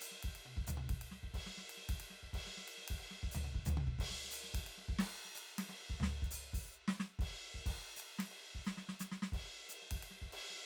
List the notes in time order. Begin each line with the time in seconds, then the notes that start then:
0.01 hi-hat pedal, ride
0.12 snare
0.23 kick, ride
0.35 ride
0.46 high tom
0.57 kick
0.67 floor tom, hi-hat pedal
0.77 high tom
0.89 kick, ride
1.02 ride
1.11 snare
1.23 kick
1.34 kick, ride
1.46 snare
1.58 snare
1.70 ride
1.77 snare
1.89 kick, ride
2.00 ride
2.10 snare
2.23 kick
2.33 kick, ride
2.47 snare
2.57 snare
2.68 ride
2.78 snare
2.88 kick, ride
2.99 ride
3.11 snare
3.23 kick
3.32 floor tom, hi-hat pedal
3.44 high tom
3.55 kick
3.65 floor tom, hi-hat pedal
3.77 high tom
3.87 kick
3.99 kick, ride
4.11 snare
4.24 snare
4.31 hi-hat pedal, ride
4.44 snare
4.54 kick, ride
4.67 ride
4.78 snare
4.89 kick
4.99 snare, crash
5.25 snare
5.35 hi-hat pedal, ride
5.58 snare, ride
5.69 snare, ride
5.90 kick
6.00 snare, floor tom
6.22 kick, open hi-hat
6.31 hi-hat pedal
6.53 open hi-hat, kick
6.88 snare
7.00 snare
7.19 kick, ride
7.54 kick
7.66 kick, crash
7.96 hi-hat pedal, ride
8.19 snare, ride
8.31 ride
8.55 kick
8.65 snare, hi-hat pedal
8.77 snare
8.89 snare
9.00 snare, hi-hat pedal
9.12 snare
9.22 snare
9.32 kick, ride
9.69 hi-hat pedal, ride
9.82 snare
9.91 kick, ride
10.03 ride
10.11 snare
10.22 kick
10.33 ride
10.50 snare